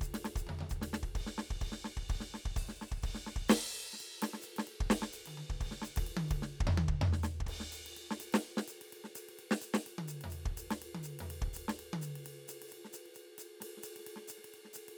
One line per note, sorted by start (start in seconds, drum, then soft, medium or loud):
0.01 kick medium
0.01 hi-hat pedal medium
0.14 snare medium
0.14 ride medium
0.25 snare medium
0.25 ride medium
0.36 kick medium
0.36 hi-hat pedal medium
0.47 floor tom medium
0.47 high tom medium
0.59 floor tom medium
0.59 high tom medium
0.69 kick medium
0.69 hi-hat pedal medium
0.82 snare medium
0.82 ride medium
0.93 snare medium
0.93 ride soft
1.03 kick medium
1.15 kick medium
1.15 ride medium
1.26 snare soft
1.38 snare medium
1.50 kick medium
1.61 kick medium
1.61 ride medium
1.72 snare soft
1.84 snare soft
1.97 kick medium
2.09 kick medium
2.09 ride medium
2.20 snare soft
2.34 snare soft
2.45 kick medium
2.56 open hi-hat medium
2.56 kick medium
2.69 snare soft
2.81 snare soft
2.92 kick medium
3.03 kick medium
3.03 ride medium
3.15 snare soft
3.27 snare soft
3.36 kick medium
3.49 snare loud
3.49 crash loud
3.93 snare soft
3.98 hi-hat pedal soft
3.98 ride medium
4.22 snare medium
4.22 ride medium
4.33 snare soft
4.42 hi-hat pedal medium
4.42 ride medium
4.56 snare medium
4.56 ride medium
4.67 ride medium
4.80 kick medium
4.90 snare loud
4.90 ride medium
5.02 snare medium
5.13 hi-hat pedal medium
5.13 ride medium
5.26 high tom medium
5.26 ride medium
5.37 high tom medium
5.50 kick medium
5.61 kick medium
5.61 ride medium
5.71 snare soft
5.82 snare soft
5.82 hi-hat pedal medium
5.96 kick medium
5.96 ride medium
6.07 ride medium
6.17 high tom loud
6.28 kick medium
6.28 hi-hat pedal soft
6.28 ride medium
6.42 snare medium
6.60 kick medium
6.67 floor tom loud
6.78 high tom loud
6.88 kick medium
7.01 floor tom loud
7.13 snare medium
7.23 snare medium
7.23 hi-hat pedal medium
7.40 kick medium
7.46 kick medium
7.46 ride medium
7.60 snare soft
7.72 hi-hat pedal medium
7.72 ride medium
7.86 ride medium
7.97 ride medium
8.11 snare medium
8.20 hi-hat pedal medium
8.20 ride medium
8.33 snare loud
8.33 ride medium
8.43 ride soft
8.57 snare medium
8.68 hi-hat pedal medium
8.68 ride medium
8.81 ride medium
8.88 hi-hat pedal soft
8.93 ride medium
9.04 snare soft
9.15 hi-hat pedal medium
9.15 ride medium
9.29 ride soft
9.37 hi-hat pedal soft
9.51 snare medium
9.61 hi-hat pedal medium
9.61 ride medium
9.74 snare medium
9.74 ride medium
9.86 ride medium
9.98 high tom medium
10.08 hi-hat pedal medium
10.08 ride medium
10.21 floor tom medium
10.21 ride medium
10.30 hi-hat pedal soft
10.30 ride medium
10.45 kick medium
10.57 hi-hat pedal medium
10.57 ride medium
10.71 snare medium
10.71 ride medium
10.82 ride medium
10.95 high tom medium
11.03 hi-hat pedal medium
11.03 ride medium
11.19 floor tom medium
11.19 ride medium
11.30 ride medium
11.42 kick medium
11.53 hi-hat pedal medium
11.53 ride medium
11.68 snare medium
11.68 ride medium
11.79 ride medium
11.93 high tom loud
12.01 hi-hat pedal medium
12.01 ride medium
12.16 ride medium
12.24 hi-hat pedal soft
12.24 ride medium
12.48 hi-hat pedal medium
12.48 ride medium
12.62 ride medium
12.68 hi-hat pedal soft
12.72 ride medium
12.85 snare soft
12.93 hi-hat pedal medium
12.93 ride medium
13.06 ride soft
13.14 hi-hat pedal soft
13.14 ride medium
13.38 hi-hat pedal medium
13.38 ride medium
13.60 snare soft
13.60 ride medium
13.77 snare soft
13.83 hi-hat pedal medium
13.83 ride medium
13.96 snare soft
13.96 ride medium
14.07 ride medium
14.16 snare soft
14.22 snare soft
14.28 hi-hat pedal medium
14.28 ride medium
14.38 snare soft
14.44 ride medium
14.54 ride soft
14.65 snare soft
14.73 snare soft
14.73 hi-hat pedal medium
14.73 ride medium
14.88 ride medium
14.94 hi-hat pedal soft